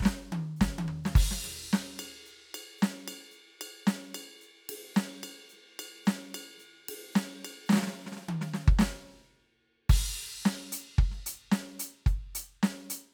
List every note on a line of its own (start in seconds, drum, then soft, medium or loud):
0.01 kick medium
0.01 snare medium
0.06 snare loud
0.33 high tom loud
0.57 hi-hat pedal soft
0.62 kick medium
0.62 snare loud
0.79 high tom loud
0.89 floor tom medium
1.05 snare medium
1.05 hi-hat pedal soft
1.16 kick loud
1.16 crash loud
1.32 snare medium
1.45 snare soft
1.45 ride medium
1.45 floor tom soft
1.64 hi-hat pedal soft
1.74 snare loud
2.00 ride bell loud
2.27 hi-hat pedal soft
2.55 ride bell loud
2.79 hi-hat pedal soft
2.83 snare loud
3.09 ride bell loud
3.32 hi-hat pedal soft
3.62 ride bell loud
3.88 snare loud
3.88 hi-hat pedal soft
4.15 ride bell loud
4.42 hi-hat pedal medium
4.70 ride loud
4.95 snare loud
4.95 hi-hat pedal soft
5.24 ride bell loud
5.50 snare soft
5.50 hi-hat pedal medium
5.80 ride bell loud
6.06 snare loud
6.06 hi-hat pedal medium
6.35 ride bell loud
6.58 snare soft
6.58 hi-hat pedal medium
6.61 snare soft
6.89 ride loud
7.13 snare loud
7.13 hi-hat pedal soft
7.46 ride bell loud
7.67 snare loud
7.67 hi-hat pedal soft
7.74 snare loud
7.77 snare loud
7.79 snare medium
7.83 snare medium
7.88 snare medium
7.94 snare soft
7.98 snare soft
8.01 snare soft
8.03 snare soft
8.05 snare soft
8.07 snare medium
8.13 snare medium
8.22 snare soft
8.29 high tom loud
8.42 snare medium
8.55 snare medium
8.69 kick loud
8.80 snare loud
8.82 snare loud
9.90 kick loud
9.90 crash loud
10.19 closed hi-hat soft
10.46 snare loud
10.73 closed hi-hat loud
10.99 kick loud
10.99 closed hi-hat soft
11.12 snare soft
11.27 closed hi-hat loud
11.52 snare loud
11.80 closed hi-hat loud
12.07 closed hi-hat soft
12.07 kick loud
12.36 closed hi-hat loud
12.64 snare loud
12.91 closed hi-hat loud